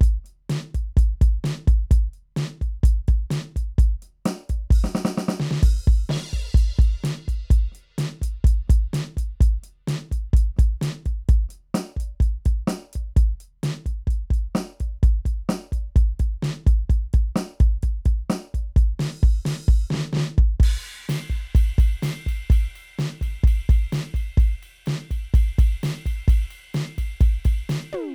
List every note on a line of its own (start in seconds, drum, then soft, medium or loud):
0.01 closed hi-hat medium
0.01 kick loud
0.24 snare soft
0.24 closed hi-hat soft
0.50 closed hi-hat medium
0.50 snare loud
0.75 kick medium
0.75 closed hi-hat medium
0.97 closed hi-hat medium
0.97 kick loud
1.21 closed hi-hat medium
1.21 kick loud
1.21 snare soft
1.44 closed hi-hat medium
1.44 snare loud
1.68 kick loud
1.68 closed hi-hat medium
1.91 closed hi-hat loud
1.91 kick loud
2.14 closed hi-hat soft
2.37 closed hi-hat medium
2.37 snare loud
2.61 kick medium
2.61 closed hi-hat soft
2.83 closed hi-hat loud
2.83 kick loud
3.08 kick loud
3.08 snare soft
3.08 closed hi-hat medium
3.31 closed hi-hat loud
3.31 snare loud
3.47 snare soft
3.56 closed hi-hat medium
3.56 kick medium
3.78 closed hi-hat medium
3.78 kick loud
4.02 closed hi-hat medium
4.02 snare soft
4.26 closed hi-hat loud
4.26 snare loud
4.49 closed hi-hat medium
4.49 kick medium
4.71 open hi-hat loud
4.71 kick loud
4.84 snare medium
4.90 hi-hat pedal soft
4.95 snare loud
5.18 snare loud
5.29 snare loud
5.34 kick soft
5.40 snare loud
5.51 snare loud
5.63 open hi-hat loud
5.63 kick loud
5.87 kick loud
6.07 snare loud
6.07 hi-hat pedal soft
6.07 crash loud
6.17 snare medium
6.33 closed hi-hat soft
6.33 kick medium
6.54 closed hi-hat medium
6.54 kick loud
6.79 closed hi-hat medium
6.79 kick loud
6.79 snare soft
7.04 closed hi-hat loud
7.04 snare loud
7.20 snare soft
7.28 kick medium
7.28 closed hi-hat medium
7.50 closed hi-hat loud
7.50 kick loud
7.72 snare soft
7.72 closed hi-hat medium
7.98 closed hi-hat loud
7.98 snare loud
8.22 kick medium
8.22 closed hi-hat loud
8.44 closed hi-hat loud
8.44 kick loud
8.68 kick loud
8.68 snare soft
8.68 closed hi-hat loud
8.94 closed hi-hat loud
8.94 snare loud
9.17 closed hi-hat medium
9.17 kick medium
9.41 closed hi-hat loud
9.41 kick loud
9.63 snare soft
9.63 closed hi-hat medium
9.88 closed hi-hat loud
9.88 snare loud
10.04 snare soft
10.12 kick medium
10.12 closed hi-hat medium
10.33 closed hi-hat loud
10.33 kick loud
10.57 closed hi-hat medium
10.57 kick loud
10.57 snare soft
10.82 closed hi-hat loud
10.82 snare loud
11.06 kick medium
11.06 closed hi-hat soft
11.29 closed hi-hat medium
11.29 kick loud
11.49 snare soft
11.49 closed hi-hat medium
11.75 closed hi-hat loud
11.75 snare loud
11.97 closed hi-hat medium
11.97 kick medium
12.20 closed hi-hat medium
12.20 kick loud
12.46 closed hi-hat medium
12.46 kick loud
12.68 closed hi-hat loud
12.68 snare loud
12.93 closed hi-hat medium
12.93 kick medium
13.17 closed hi-hat medium
13.17 kick loud
13.40 closed hi-hat medium
13.63 closed hi-hat loud
13.63 snare loud
13.86 closed hi-hat medium
13.86 kick medium
14.07 closed hi-hat medium
14.07 kick medium
14.31 closed hi-hat medium
14.31 kick medium
14.55 closed hi-hat medium
14.55 snare loud
14.80 closed hi-hat medium
14.80 kick medium
15.03 closed hi-hat medium
15.03 kick loud
15.26 closed hi-hat medium
15.26 kick medium
15.49 closed hi-hat medium
15.49 snare loud
15.72 closed hi-hat medium
15.72 kick medium
15.96 closed hi-hat medium
15.96 kick loud
16.20 closed hi-hat medium
16.20 kick medium
16.43 closed hi-hat medium
16.43 snare loud
16.67 closed hi-hat medium
16.67 kick loud
16.90 closed hi-hat medium
16.90 kick loud
17.13 closed hi-hat medium
17.13 kick loud
17.36 closed hi-hat medium
17.36 snare loud
17.60 closed hi-hat medium
17.60 kick loud
17.83 closed hi-hat medium
17.83 kick medium
18.06 closed hi-hat medium
18.06 kick loud
18.30 closed hi-hat medium
18.30 snare loud
18.54 closed hi-hat medium
18.54 kick medium
18.76 closed hi-hat medium
18.76 kick loud
19.00 open hi-hat loud
19.00 snare loud
19.08 snare soft
19.23 open hi-hat medium
19.23 kick loud
19.23 snare soft
19.46 open hi-hat loud
19.46 snare loud
19.68 open hi-hat medium
19.68 kick loud
19.90 snare loud
19.90 hi-hat pedal soft
19.94 snare loud
20.13 snare loud
20.17 snare loud
20.38 kick loud
20.60 open hi-hat loud
20.60 kick loud
20.60 crash loud
21.07 snare loud
21.07 hi-hat pedal soft
21.07 ride loud
21.30 kick medium
21.30 ride soft
21.52 kick loud
21.52 hi-hat pedal soft
21.52 ride medium
21.78 kick loud
21.78 ride medium
22.03 snare loud
22.03 ride loud
22.27 kick medium
22.27 ride medium
22.50 kick loud
22.50 ride medium
22.76 ride medium
22.99 snare loud
22.99 ride medium
23.21 kick medium
23.21 ride medium
23.26 snare soft
23.44 kick loud
23.44 ride medium
23.69 kick loud
23.69 ride medium
23.93 snare loud
23.93 ride medium
24.14 kick medium
24.14 ride medium
24.38 kick loud
24.38 ride medium
24.63 ride medium
24.86 snare loud
24.86 ride medium
25.11 kick medium
25.11 ride medium
25.34 kick loud
25.34 ride medium
25.59 kick loud
25.59 ride medium
25.83 snare loud
25.83 ride loud
26.06 kick medium
26.06 ride medium
26.28 kick loud
26.28 ride medium
26.51 ride medium
26.74 snare loud
26.74 ride medium
26.98 kick medium
26.98 ride medium
27.21 kick loud
27.21 ride medium
27.45 kick loud
27.45 ride medium
27.69 snare loud
27.69 ride medium
27.93 floor tom loud
27.93 high tom loud